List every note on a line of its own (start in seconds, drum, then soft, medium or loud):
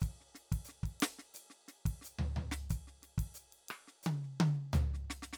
0.01 kick medium
0.01 hi-hat pedal soft
0.01 ride soft
0.21 snare soft
0.35 snare soft
0.35 ride soft
0.52 kick medium
0.52 ride medium
0.65 snare soft
0.65 hi-hat pedal medium
0.83 kick medium
0.83 ride soft
1.00 snare loud
1.00 ride medium
1.19 snare soft
1.34 hi-hat pedal medium
1.34 ride soft
1.50 snare soft
1.68 snare soft
1.68 ride soft
1.86 kick medium
1.86 ride medium
2.01 snare soft
2.01 hi-hat pedal medium
2.19 floor tom medium
2.36 floor tom medium
2.52 snare medium
2.70 kick medium
2.70 hi-hat pedal medium
2.70 ride soft
2.87 snare soft
3.03 snare soft
3.03 ride soft
3.18 kick medium
3.18 ride medium
3.34 hi-hat pedal medium
3.53 ride soft
3.69 cross-stick medium
3.69 ride soft
3.88 snare soft
4.03 hi-hat pedal medium
4.03 high tom loud
4.23 snare soft
4.40 high tom loud
4.54 snare soft
4.73 floor tom loud
4.73 hi-hat pedal medium
4.94 snare soft
5.04 kick soft
5.10 snare medium
5.22 snare medium
5.33 snare medium